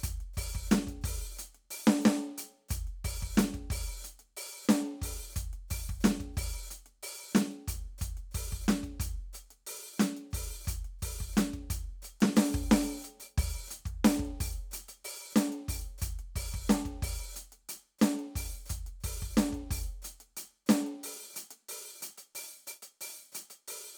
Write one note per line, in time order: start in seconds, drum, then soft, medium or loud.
0.01 closed hi-hat loud
0.01 kick medium
0.01 hi-hat pedal medium
0.21 closed hi-hat soft
0.34 open hi-hat loud
0.34 kick medium
0.34 hi-hat pedal soft
0.55 kick medium
0.68 closed hi-hat loud
0.68 hi-hat pedal medium
0.72 snare loud
0.88 kick soft
0.88 closed hi-hat medium
1.02 open hi-hat loud
1.02 kick medium
1.02 hi-hat pedal soft
1.37 closed hi-hat loud
1.37 hi-hat pedal medium
1.55 closed hi-hat soft
1.71 open hi-hat loud
1.88 snare loud
2.01 hi-hat pedal medium
2.06 snare loud
2.38 closed hi-hat loud
2.69 closed hi-hat loud
2.69 kick medium
2.69 hi-hat pedal medium
2.88 closed hi-hat soft
3.05 open hi-hat loud
3.05 kick medium
3.23 kick medium
3.35 closed hi-hat loud
3.35 snare loud
3.35 hi-hat pedal medium
3.54 kick soft
3.54 closed hi-hat soft
3.71 open hi-hat loud
3.71 kick medium
4.02 closed hi-hat medium
4.02 hi-hat pedal soft
4.20 closed hi-hat medium
4.37 open hi-hat loud
4.65 hi-hat pedal medium
4.69 closed hi-hat loud
4.69 snare loud
4.87 closed hi-hat soft
5.02 open hi-hat loud
5.02 kick medium
5.33 closed hi-hat loud
5.33 kick medium
5.33 hi-hat pedal medium
5.53 closed hi-hat soft
5.69 open hi-hat loud
5.69 kick medium
5.69 hi-hat pedal soft
5.90 kick medium
6.01 snare loud
6.01 hi-hat pedal medium
6.05 closed hi-hat loud
6.21 kick soft
6.21 closed hi-hat soft
6.34 kick medium
6.34 hi-hat pedal soft
6.38 open hi-hat loud
6.68 closed hi-hat loud
6.68 hi-hat pedal soft
6.86 closed hi-hat soft
7.03 open hi-hat loud
7.32 closed hi-hat loud
7.32 snare loud
7.32 hi-hat pedal medium
7.52 closed hi-hat soft
7.68 open hi-hat loud
7.68 kick medium
7.99 closed hi-hat loud
7.99 kick medium
7.99 hi-hat pedal medium
8.18 closed hi-hat soft
8.32 open hi-hat loud
8.32 kick medium
8.32 hi-hat pedal soft
8.53 kick medium
8.64 hi-hat pedal medium
8.69 closed hi-hat medium
8.69 snare loud
8.84 kick soft
8.84 closed hi-hat soft
9.00 open hi-hat loud
9.00 kick medium
9.33 closed hi-hat medium
9.33 hi-hat pedal medium
9.51 closed hi-hat medium
9.67 open hi-hat loud
9.98 closed hi-hat loud
9.98 snare loud
9.98 hi-hat pedal medium
10.17 closed hi-hat medium
10.31 open hi-hat loud
10.31 kick medium
10.31 hi-hat pedal soft
10.65 closed hi-hat loud
10.65 kick medium
10.65 hi-hat pedal medium
10.85 closed hi-hat soft
10.99 open hi-hat loud
10.99 kick medium
10.99 hi-hat pedal soft
11.21 kick medium
11.33 hi-hat pedal medium
11.38 closed hi-hat loud
11.38 snare loud
11.54 kick soft
11.54 closed hi-hat soft
11.71 open hi-hat loud
11.71 kick medium
12.03 closed hi-hat medium
12.03 hi-hat pedal medium
12.21 snare loud
12.21 closed hi-hat medium
12.37 open hi-hat loud
12.37 snare loud
12.51 kick soft
12.55 kick medium
12.72 open hi-hat loud
12.72 snare loud
13.02 closed hi-hat medium
13.02 hi-hat pedal medium
13.20 open hi-hat loud
13.20 hi-hat pedal soft
13.38 open hi-hat loud
13.38 kick loud
13.68 closed hi-hat loud
13.68 hi-hat pedal medium
13.86 kick medium
13.86 closed hi-hat medium
14.05 open hi-hat loud
14.05 snare loud
14.13 hi-hat pedal soft
14.20 kick medium
14.25 closed hi-hat soft
14.41 open hi-hat loud
14.41 kick medium
14.72 closed hi-hat loud
14.72 hi-hat pedal medium
14.89 closed hi-hat medium
15.05 open hi-hat loud
15.33 snare loud
15.33 hi-hat pedal medium
15.37 closed hi-hat loud
15.53 closed hi-hat medium
15.69 open hi-hat loud
15.69 kick medium
15.98 closed hi-hat loud
15.98 kick medium
15.98 hi-hat pedal medium
16.19 closed hi-hat soft
16.36 open hi-hat loud
16.36 kick medium
16.54 kick medium
16.68 closed hi-hat loud
16.68 snare loud
16.68 hi-hat pedal medium
16.86 kick medium
16.86 closed hi-hat medium
17.03 open hi-hat loud
17.03 kick medium
17.34 closed hi-hat loud
17.34 hi-hat pedal medium
17.53 closed hi-hat medium
17.69 open hi-hat loud
17.99 closed hi-hat loud
17.99 snare loud
17.99 hi-hat pedal soft
18.19 closed hi-hat soft
18.36 open hi-hat loud
18.36 kick medium
18.66 closed hi-hat loud
18.66 hi-hat pedal medium
18.71 kick medium
18.87 closed hi-hat medium
19.01 open hi-hat loud
19.01 kick medium
19.01 hi-hat pedal soft
19.23 kick medium
19.34 snare loud
19.34 hi-hat pedal medium
19.38 closed hi-hat loud
19.53 kick soft
19.53 closed hi-hat soft
19.71 open hi-hat loud
19.71 kick medium
20.03 closed hi-hat loud
20.03 hi-hat pedal medium
20.21 closed hi-hat medium
20.37 closed hi-hat loud
20.67 closed hi-hat loud
20.67 snare loud
20.67 hi-hat pedal medium
20.87 closed hi-hat soft
21.04 open hi-hat loud
21.34 closed hi-hat loud
21.34 hi-hat pedal medium
21.51 closed hi-hat medium
21.69 open hi-hat loud
22.01 closed hi-hat loud
22.01 hi-hat pedal medium
22.18 closed hi-hat medium
22.36 open hi-hat loud
22.67 open hi-hat loud
22.67 hi-hat pedal soft
22.83 closed hi-hat medium
23.01 open hi-hat loud
23.33 closed hi-hat loud
23.33 hi-hat pedal medium
23.51 closed hi-hat medium
23.68 open hi-hat loud